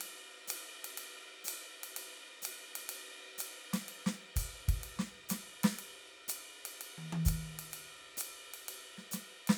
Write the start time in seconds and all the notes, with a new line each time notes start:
0.01 ride
0.48 hi-hat pedal, ride
0.85 ride
0.98 ride
1.45 hi-hat pedal, ride
1.83 ride
1.97 ride
2.42 hi-hat pedal, ride
2.76 ride
2.89 ride
3.38 hi-hat pedal, ride
3.73 snare, ride
3.88 ride
4.06 snare
4.36 kick, hi-hat pedal, ride
4.68 kick, ride
4.83 hi-hat pedal, ride
4.99 snare
5.29 snare, hi-hat pedal, ride
5.63 snare, ride
5.74 hi-hat pedal
5.79 ride
6.28 hi-hat pedal, ride
6.65 ride
6.81 ride
6.98 high tom
7.13 high tom
7.25 kick, hi-hat pedal, ride
7.59 ride
7.71 hi-hat pedal, ride
8.17 hi-hat pedal, ride
8.54 ride
8.61 hi-hat pedal
8.69 ride
8.98 snare
9.11 snare, hi-hat pedal, ride
9.48 snare, ride